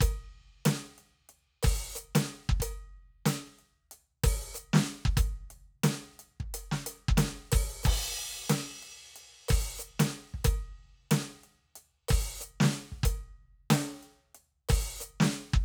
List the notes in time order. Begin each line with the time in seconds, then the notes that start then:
0.01 kick, closed hi-hat
0.65 snare, closed hi-hat
0.98 closed hi-hat
1.29 closed hi-hat
1.63 open hi-hat, kick
1.96 hi-hat pedal
2.15 snare, closed hi-hat
2.49 kick
2.60 kick, closed hi-hat
3.26 closed hi-hat, snare
3.59 closed hi-hat
3.91 closed hi-hat
4.24 kick, open hi-hat
4.55 hi-hat pedal
4.74 snare
4.76 snare
5.05 kick
5.17 kick, closed hi-hat
5.51 closed hi-hat
5.84 snare, closed hi-hat
6.19 closed hi-hat
6.40 kick
6.54 closed hi-hat
6.72 snare
6.87 closed hi-hat
7.09 kick
7.18 snare, closed hi-hat
7.52 kick, open hi-hat
7.84 kick, hi-hat pedal, crash
8.17 closed hi-hat
8.50 snare, closed hi-hat
8.83 closed hi-hat
9.16 closed hi-hat
9.49 open hi-hat, kick
9.79 hi-hat pedal
10.00 snare, closed hi-hat
10.34 kick
10.45 kick, closed hi-hat
11.11 snare, closed hi-hat
11.44 closed hi-hat
11.76 closed hi-hat
12.09 open hi-hat, kick
12.41 hi-hat pedal
12.60 snare
12.63 snare
12.92 kick
13.04 kick, closed hi-hat
13.70 snare, closed hi-hat
14.03 closed hi-hat
14.35 closed hi-hat
14.69 open hi-hat, kick
15.01 hi-hat pedal
15.20 snare
15.23 snare
15.54 kick